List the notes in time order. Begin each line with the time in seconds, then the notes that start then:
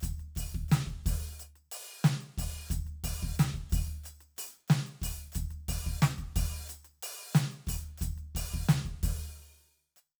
0.01 kick, percussion
0.04 percussion
0.20 percussion
0.36 kick, percussion
0.38 percussion
0.55 kick
0.69 snare, percussion
0.72 percussion
0.87 kick, percussion
1.04 kick, percussion
1.07 percussion
1.40 percussion
1.56 percussion
1.72 percussion
2.04 snare, percussion
2.21 percussion
2.38 kick, percussion
2.69 kick, percussion
2.72 percussion
2.87 percussion
3.04 kick, percussion
3.23 kick
3.36 percussion
3.40 snare, percussion
3.54 kick, percussion
3.70 kick, percussion
3.73 percussion
4.04 percussion
4.06 percussion
4.21 percussion
4.37 percussion
4.39 percussion
4.68 snare, percussion
4.71 percussion
4.87 percussion
5.02 kick, percussion
5.04 percussion
5.33 percussion
5.35 kick, percussion
5.51 percussion
5.69 kick, percussion
5.87 kick
5.99 snare, percussion
6.03 percussion
6.19 kick, percussion
6.36 kick, percussion
6.67 percussion
6.70 percussion
6.85 percussion
7.03 percussion
7.33 snare, percussion
7.36 percussion
7.52 percussion
7.67 kick, percussion
7.69 percussion
7.98 kick, percussion
8.02 percussion
8.18 percussion
8.36 kick, percussion
8.54 kick
8.66 snare, percussion
8.69 percussion
8.85 kick, percussion
9.03 kick, percussion
9.97 percussion